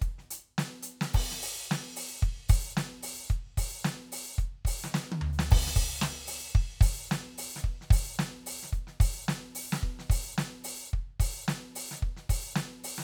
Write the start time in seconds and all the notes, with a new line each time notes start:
0.02 kick, closed hi-hat
0.19 snare
0.31 closed hi-hat
0.58 snare
0.83 closed hi-hat
1.01 snare
1.09 hi-hat pedal
1.14 kick, crash
1.31 snare
1.42 open hi-hat
1.66 hi-hat pedal
1.71 snare
1.96 open hi-hat
2.19 kick, hi-hat pedal
2.49 open hi-hat, kick
2.72 hi-hat pedal
2.77 snare
3.03 open hi-hat
3.27 kick, hi-hat pedal
3.58 open hi-hat, kick
3.82 snare, hi-hat pedal
4.12 open hi-hat
4.36 kick, hi-hat pedal
4.65 open hi-hat, kick
4.84 snare, hi-hat pedal
4.94 snare
5.04 hi-hat pedal
5.12 high tom
5.21 floor tom
5.33 hi-hat pedal
5.39 snare
5.51 kick, crash
5.67 snare
5.76 open hi-hat, kick
5.99 snare, hi-hat pedal
6.27 open hi-hat
6.52 kick, hi-hat pedal
6.59 snare
6.64 snare
6.67 snare
6.81 open hi-hat, kick
7.08 snare, hi-hat pedal
7.38 open hi-hat
7.56 snare
7.60 kick, hi-hat pedal
7.81 snare
7.91 open hi-hat, kick
8.16 snare, hi-hat pedal
8.46 open hi-hat
8.63 snare
8.69 kick, hi-hat pedal
8.73 closed hi-hat
8.87 snare
9.00 open hi-hat, kick
9.25 snare, hi-hat pedal
9.55 open hi-hat
9.72 snare
9.79 hi-hat pedal
9.83 kick, closed hi-hat
9.99 snare
10.10 open hi-hat, kick
10.34 hi-hat pedal
10.38 snare
10.64 open hi-hat
10.89 hi-hat pedal
10.93 kick
11.20 open hi-hat, kick
11.44 snare, hi-hat pedal
11.76 open hi-hat
11.91 snare
11.97 hi-hat pedal
12.02 kick, closed hi-hat
12.17 snare
12.30 open hi-hat, kick
12.53 snare, hi-hat pedal
12.84 open hi-hat
12.98 snare